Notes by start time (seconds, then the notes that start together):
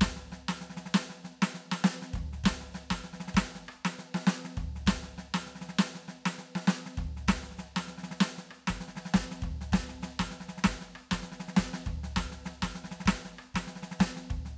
0.01 kick, snare
0.08 kick
0.16 snare
0.31 snare, hi-hat pedal
0.49 snare
0.61 snare
0.70 snare
0.77 snare
0.86 snare
0.92 snare, hi-hat pedal
1.10 snare
1.25 snare
1.42 snare
1.53 snare, hi-hat pedal
1.72 snare
1.84 snare
2.02 snare
2.13 kick, floor tom, hi-hat pedal
2.23 kick
2.33 snare
2.44 kick, snare
2.51 kick
2.61 snare
2.73 snare, hi-hat pedal
2.91 kick, snare
3.04 snare
3.13 snare
3.20 snare
3.28 snare
3.35 kick, snare, hi-hat pedal
3.40 kick
3.55 snare
3.69 cross-stick
3.85 snare
3.96 snare, hi-hat pedal
4.15 snare
4.27 snare
4.45 snare
4.57 kick, floor tom, hi-hat pedal
4.64 kick
4.66 kick
4.76 snare
4.87 kick, snare
5.03 snare
5.18 snare, hi-hat pedal
5.34 snare
5.46 snare
5.55 snare
5.61 snare
5.69 snare
5.77 snare, hi-hat pedal
5.95 snare
6.08 snare
6.26 snare
6.37 snare, hi-hat pedal
6.56 snare
6.68 snare
6.86 snare
6.98 kick, floor tom, hi-hat pedal
7.04 kick
7.07 kick
7.17 snare
7.28 kick, snare
7.35 kick
7.43 snare
7.51 snare
7.57 snare, hi-hat pedal
7.76 snare
7.88 snare
7.98 snare
8.04 snare
8.11 snare
8.18 snare, hi-hat pedal
8.38 snare
8.51 cross-stick
8.68 kick, snare
8.78 snare, hi-hat pedal
8.88 snare
8.96 snare
9.14 kick, snare
9.21 kick
9.32 snare
9.41 kick, floor tom, hi-hat pedal
9.49 kick
9.61 snare
9.73 kick, snare
9.79 kick
9.82 kick
9.89 snare
10.01 snare, hi-hat pedal
10.20 kick, snare
10.31 snare
10.41 snare
10.49 snare
10.58 snare
10.64 kick, snare, hi-hat pedal
10.72 kick
10.75 kick
10.81 snare
10.96 cross-stick
11.11 kick, snare
11.21 snare, hi-hat pedal
11.32 snare
11.40 snare
11.48 snare
11.57 kick, snare
11.74 snare
11.85 kick, floor tom, hi-hat pedal
11.93 kick
12.04 snare
12.16 kick, snare
12.23 kick
12.26 kick
12.32 snare
12.44 snare, hi-hat pedal
12.63 kick, snare
12.75 snare
12.84 snare
12.91 snare
13.00 snare
13.06 kick, snare, hi-hat pedal
13.12 kick
13.25 snare
13.39 cross-stick
13.55 kick, snare
13.66 snare, hi-hat pedal
13.76 snare
13.83 snare
13.92 snare
14.00 kick, snare
14.17 snare
14.30 kick, floor tom, hi-hat pedal
14.37 kick
14.40 kick
14.46 snare